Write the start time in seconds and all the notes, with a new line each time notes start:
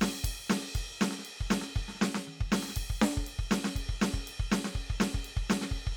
0.01 snare, crash
0.24 kick, ride
0.50 snare, ride
0.75 kick, ride
1.01 snare, ride
1.11 snare
1.19 snare
1.25 ride
1.41 kick
1.50 snare, ride
1.61 snare
1.75 kick, ride
1.88 snare
1.95 snare
2.01 snare
2.14 snare
2.27 high tom
2.41 kick
2.52 snare, crash
2.62 snare
2.68 snare
2.76 kick, ride
2.90 kick
3.01 snare, ride
3.17 kick
3.27 ride
3.39 kick
3.51 snare, ride
3.64 snare
3.76 kick, ride
3.89 kick
4.01 snare, ride
4.14 kick
4.27 ride
4.39 kick
4.52 snare, ride
4.64 snare
4.75 kick, ride
4.90 kick
5.00 snare, ride
5.14 kick
5.24 ride
5.37 kick
5.50 snare, ride
5.61 snare
5.71 kick, ride
5.87 kick